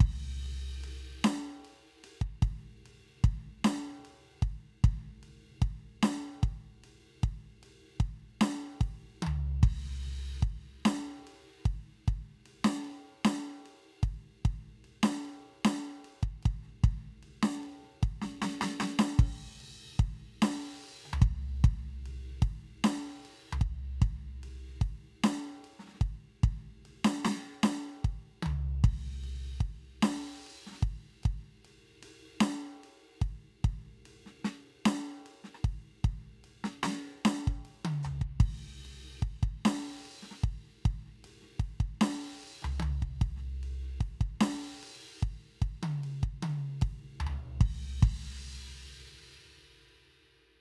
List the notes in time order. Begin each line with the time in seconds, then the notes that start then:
0.01 kick, ride, crash
0.46 ride
0.84 ride
1.25 snare, ride
1.65 ride
2.04 ride
2.21 kick
2.43 kick, ride
2.86 ride
3.24 kick, ride
3.65 snare, ride
4.05 ride
4.42 kick, ride
4.84 kick, ride
5.23 ride
5.62 kick, ride
6.03 snare
6.43 kick, ride
6.84 ride
7.24 kick, ride
7.63 ride
8.00 kick, ride
8.41 snare, ride
8.81 kick, ride
9.22 high tom
9.27 floor tom
9.63 kick, crash
10.04 ride
10.43 kick, ride
10.86 snare, ride
11.27 ride
11.66 kick, ride
11.92 snare
11.96 snare
12.08 kick, ride
12.46 ride
12.65 snare
12.79 snare
12.84 snare, ride
13.25 snare, ride
13.66 ride
14.03 kick, ride
14.23 snare
14.45 kick, ride
14.85 ride
15.03 snare
15.18 snare
15.25 ride
15.65 snare, ride
16.05 ride
16.23 kick
16.43 kick, ride
16.63 snare
16.66 snare
16.84 kick, ride
17.02 snare
17.23 ride
17.43 snare
17.64 ride
17.83 snare
18.03 kick, ride
18.22 snare
18.42 snare
18.61 snare
18.80 snare
18.99 snare
19.19 kick, crash
19.46 kick
19.61 ride
20.00 kick, ride
20.42 snare, crash
20.57 snare
20.84 ride
21.05 high tom
21.13 floor tom
21.22 kick
21.64 kick, ride
22.06 ride
22.42 kick, ride
22.84 snare, crash
22.98 snare
23.25 ride
23.45 high tom
23.53 floor tom
23.61 kick
24.02 kick, ride
24.44 ride
24.82 kick, ride
25.24 snare, ride
25.62 snare, ride
25.80 snare
25.84 snare
25.88 snare
26.01 kick, ride
26.44 kick, ride
26.86 ride
27.05 snare
27.25 snare
27.64 snare, ride
28.05 kick, ride
28.43 floor tom, high tom
28.84 kick, ride, crash
29.24 ride
29.61 kick, ride
30.03 snare, crash
30.47 ride
30.67 snare
30.72 snare
30.75 snare
30.83 kick, ride
31.24 kick, ride
31.46 snare
31.65 ride
32.03 ride
32.41 snare, ride
32.84 ride
33.22 kick, ride
33.45 snare
33.65 kick, ride
34.06 ride
34.26 snare
34.45 snare, ride
34.86 snare, ride
34.99 snare
35.26 ride
35.44 snare
35.55 cross-stick
35.65 kick, ride
36.05 kick, ride
36.24 snare
36.44 ride
36.64 snare
36.83 snare, ride
37.25 snare, ride
37.48 kick
37.65 ride
37.85 high tom
38.03 hi-hat pedal, floor tom
38.22 kick
38.40 kick, ride, crash
38.85 ride
39.23 kick, ride
39.43 kick
39.65 snare, crash
40.06 ride
40.23 snare
40.31 snare
40.44 kick, ride
40.65 snare
40.86 kick, ride
41.06 snare
41.24 ride
41.42 snare
41.60 kick, ride
41.80 kick
42.01 snare, crash
42.44 ride
42.62 floor tom, high tom
42.80 floor tom, high tom
43.02 kick
43.22 kick, ride
43.37 snare
43.44 snare
43.63 ride
43.83 snare
44.01 kick, ride
44.21 kick
44.41 snare, crash
44.83 ride
45.23 kick, ride
45.42 snare
45.62 kick, ride
45.83 high tom
46.04 ride
46.23 kick
46.43 high tom, ride
46.82 kick, ride
47.20 floor tom
47.27 floor tom
47.61 kick, crash
48.03 kick, crash